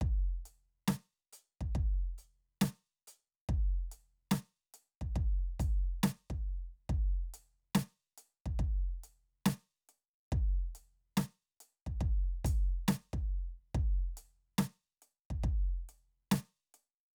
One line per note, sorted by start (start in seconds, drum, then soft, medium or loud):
0.01 kick medium
0.01 ride soft
0.46 closed hi-hat medium
0.88 snare loud
1.33 closed hi-hat medium
1.61 kick soft
1.75 kick medium
2.18 closed hi-hat soft
2.61 snare loud
3.07 closed hi-hat medium
3.49 kick medium
3.92 closed hi-hat medium
4.31 snare loud
4.74 closed hi-hat medium
5.01 kick soft
5.16 kick medium
5.60 kick medium
5.60 closed hi-hat medium
6.03 snare loud
6.30 kick medium
6.89 kick medium
6.89 ride soft
7.34 closed hi-hat medium
7.75 snare loud
8.18 closed hi-hat medium
8.46 kick medium
8.59 kick medium
8.59 crash soft
9.04 closed hi-hat medium
9.46 snare loud
9.89 closed hi-hat soft
10.32 kick medium
10.32 ride soft
10.75 closed hi-hat medium
11.17 snare loud
11.60 closed hi-hat medium
11.86 kick soft
12.01 kick medium
12.45 kick medium
12.45 closed hi-hat medium
12.88 snare loud
13.13 kick medium
13.75 kick medium
13.75 snare soft
13.75 crash soft
14.17 closed hi-hat medium
14.58 snare loud
15.02 closed hi-hat soft
15.30 kick soft
15.44 kick medium
15.44 crash soft
15.89 closed hi-hat soft
16.31 snare loud
16.74 closed hi-hat soft